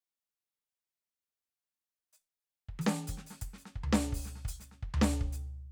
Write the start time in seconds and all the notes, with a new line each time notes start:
2.13 hi-hat pedal
2.68 kick
2.79 hi-hat pedal, high tom
2.86 snare
3.07 closed hi-hat, kick
3.17 snare
3.26 hi-hat pedal
3.30 snare
3.41 kick, closed hi-hat
3.53 snare
3.58 hi-hat pedal
3.65 snare
3.75 kick
3.83 floor tom
3.93 snare
4.12 open hi-hat, kick
4.24 snare, hi-hat pedal
4.35 snare
4.45 closed hi-hat, kick
4.60 snare, hi-hat pedal
4.71 snare
4.82 kick
4.94 floor tom
5.01 snare
5.21 kick
5.32 hi-hat pedal